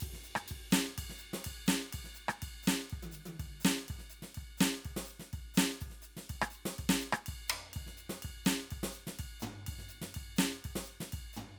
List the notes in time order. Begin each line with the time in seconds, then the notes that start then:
0.01 kick, ride
0.09 kick
0.14 snare
0.24 hi-hat pedal, ride
0.36 cross-stick
0.48 kick, ride
0.71 snare, hi-hat pedal
0.98 kick, ride bell
1.05 kick
1.10 snare
1.18 hi-hat pedal, ride
1.34 snare
1.40 hi-hat pedal
1.45 kick, ride bell
1.67 snare, hi-hat pedal
1.89 hi-hat pedal
1.93 kick, ride bell
2.00 kick
2.05 snare
2.15 hi-hat pedal, ride
2.29 cross-stick
2.43 kick, ride bell
2.64 hi-hat pedal
2.68 snare
2.90 kick, ride bell
3.00 kick, high tom
3.12 hi-hat pedal, ride
3.26 closed hi-hat, high tom
3.40 kick, ride bell
3.46 kick
3.61 hi-hat pedal
3.65 snare
3.89 kick, ride bell
3.97 kick, snare
4.10 hi-hat pedal, ride
4.23 snare
4.35 kick, ride bell
4.44 kick
4.58 snare, hi-hat pedal
4.85 kick, ride bell
4.92 kick
4.97 snare
5.06 hi-hat pedal
5.10 ride
5.20 snare
5.34 kick, ride bell
5.40 kick
5.55 snare, hi-hat pedal
5.76 hi-hat pedal
5.81 kick, ride
5.88 kick, snare
6.03 hi-hat pedal, ride
6.17 snare
6.30 kick, ride bell
6.36 kick
6.42 cross-stick
6.51 hi-hat pedal, ride
6.66 snare
6.79 kick, ride bell
6.85 kick
6.90 snare
7.00 hi-hat pedal, ride
7.13 cross-stick
7.27 kick, ride bell
7.35 kick
7.49 hi-hat pedal, floor tom
7.74 kick, ride bell
7.83 kick
7.87 snare
7.98 hi-hat pedal, ride
8.10 snare
8.23 kick, ride bell
8.31 kick
8.45 snare, hi-hat pedal
8.71 kick, ride bell
8.78 kick
8.84 snare
8.93 hi-hat pedal, ride
9.07 snare
9.19 kick, ride bell
9.26 kick
9.40 floor tom, hi-hat pedal
9.67 kick, ride bell
9.75 kick
9.79 snare
9.89 hi-hat pedal, ride
10.02 snare
10.15 kick, ride bell
10.23 kick
10.37 snare, hi-hat pedal
10.65 kick, ride bell
10.72 kick
10.76 snare
10.85 hi-hat pedal, ride
11.01 snare
11.13 kick, ride bell
11.20 kick
11.34 floor tom, hi-hat pedal